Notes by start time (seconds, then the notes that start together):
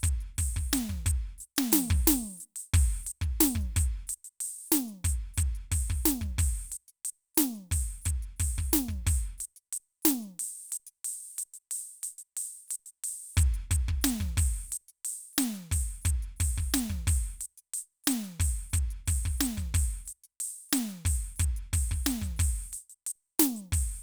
0.01 closed hi-hat, kick, hi-hat pedal
0.21 closed hi-hat
0.35 open hi-hat, kick, hi-hat pedal
0.57 kick
0.69 hi-hat pedal
0.73 closed hi-hat, snare
0.90 kick, closed hi-hat
1.06 open hi-hat, kick
1.38 closed hi-hat, hi-hat pedal
1.57 snare, closed hi-hat
1.72 open hi-hat, snare
1.87 kick
1.90 kick
2.08 open hi-hat, snare
2.38 closed hi-hat, hi-hat pedal
2.56 open hi-hat, hi-hat pedal
2.74 open hi-hat, kick
3.04 closed hi-hat, hi-hat pedal
3.22 kick, closed hi-hat
3.41 open hi-hat, snare
3.49 hi-hat pedal
3.55 kick
3.61 closed hi-hat
3.77 open hi-hat, kick
4.07 closed hi-hat, hi-hat pedal
4.25 closed hi-hat
4.41 open hi-hat
4.68 snare, hi-hat pedal
4.73 closed hi-hat
4.88 closed hi-hat
5.05 open hi-hat, kick
5.34 closed hi-hat, kick, hi-hat pedal
5.55 closed hi-hat
5.72 open hi-hat, kick
5.90 kick
6.03 closed hi-hat, snare, hi-hat pedal
6.21 kick, closed hi-hat
6.39 open hi-hat, kick
6.70 closed hi-hat, hi-hat pedal
6.88 closed hi-hat
7.05 open hi-hat
7.35 closed hi-hat, snare, hi-hat pedal
7.55 closed hi-hat
7.72 open hi-hat, kick
8.02 closed hi-hat, hi-hat pedal
8.06 kick
8.23 closed hi-hat
8.37 open hi-hat, kick, hi-hat pedal
8.58 kick
8.70 snare, hi-hat pedal
8.74 closed hi-hat
8.89 kick, closed hi-hat
9.07 open hi-hat, kick
9.38 closed hi-hat, hi-hat pedal
9.56 closed hi-hat
9.73 closed hi-hat
10.03 closed hi-hat, snare, hi-hat pedal
10.23 closed hi-hat
10.40 open hi-hat
10.70 closed hi-hat, hi-hat pedal
10.87 closed hi-hat
11.05 open hi-hat
11.36 closed hi-hat, hi-hat pedal
11.54 closed hi-hat
11.71 open hi-hat
12.03 open hi-hat, hi-hat pedal
12.18 closed hi-hat
12.37 open hi-hat
12.68 closed hi-hat, hi-hat pedal
12.86 closed hi-hat
13.04 open hi-hat
13.35 closed hi-hat, kick, hi-hat pedal
13.54 closed hi-hat
13.71 open hi-hat, kick
13.89 kick
14.02 closed hi-hat, snare, hi-hat pedal
14.20 kick, closed hi-hat
14.38 open hi-hat, kick
14.70 closed hi-hat, hi-hat pedal
14.89 closed hi-hat
15.05 open hi-hat
15.33 hi-hat pedal
15.38 closed hi-hat, snare
15.55 closed hi-hat
15.72 open hi-hat, kick
16.02 closed hi-hat, kick, hi-hat pedal
16.23 closed hi-hat
16.37 open hi-hat, kick, hi-hat pedal
16.58 kick
16.70 hi-hat pedal
16.74 closed hi-hat, snare
16.90 kick, closed hi-hat
17.06 open hi-hat, kick, hi-hat pedal
17.40 closed hi-hat, hi-hat pedal
17.58 closed hi-hat
17.74 open hi-hat
18.04 closed hi-hat, snare, hi-hat pedal
18.24 closed hi-hat
18.40 open hi-hat, kick
18.70 closed hi-hat, kick, hi-hat pedal
18.91 closed hi-hat
19.06 open hi-hat, kick, hi-hat pedal
19.26 kick
19.38 snare, hi-hat pedal
19.42 closed hi-hat
19.58 closed hi-hat, kick
19.74 open hi-hat, kick
20.06 closed hi-hat, hi-hat pedal
20.24 closed hi-hat
20.40 open hi-hat
20.70 closed hi-hat, snare, hi-hat pedal
20.90 closed hi-hat
21.05 open hi-hat, kick, hi-hat pedal
21.36 closed hi-hat, kick, hi-hat pedal
21.57 closed hi-hat
21.73 open hi-hat, kick
21.91 kick
22.05 closed hi-hat, snare, hi-hat pedal
22.22 closed hi-hat, kick
22.37 open hi-hat, kick, hi-hat pedal
22.73 open hi-hat, hi-hat pedal
22.90 closed hi-hat
23.07 closed hi-hat
23.39 closed hi-hat, snare, hi-hat pedal
23.56 closed hi-hat
23.73 open hi-hat, kick